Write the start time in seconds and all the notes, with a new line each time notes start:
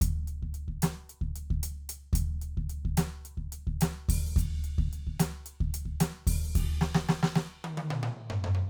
0.01 kick, closed hi-hat
0.27 closed hi-hat
0.42 kick
0.54 closed hi-hat
0.68 kick
0.82 snare, closed hi-hat
1.09 closed hi-hat
1.21 kick
1.36 closed hi-hat
1.50 kick
1.63 closed hi-hat
1.89 closed hi-hat
2.13 kick, closed hi-hat
2.41 closed hi-hat
2.57 kick
2.69 closed hi-hat
2.85 kick
2.97 snare, closed hi-hat
3.25 closed hi-hat
3.37 kick
3.52 closed hi-hat
3.67 kick
3.81 snare, closed hi-hat
4.09 kick, open hi-hat
4.36 kick, hi-hat pedal, crash
4.64 closed hi-hat
4.78 kick
4.93 closed hi-hat
5.07 kick
5.20 snare, closed hi-hat
5.46 closed hi-hat
5.60 kick
5.74 closed hi-hat
5.85 kick
6.00 snare, closed hi-hat
6.27 kick, open hi-hat
6.55 kick, hi-hat pedal, crash
6.81 snare
6.95 snare
7.09 snare
7.23 snare
7.36 snare
7.64 high tom
7.77 high tom
7.90 mid tom
8.03 mid tom
8.30 floor tom
8.44 floor tom
8.55 floor tom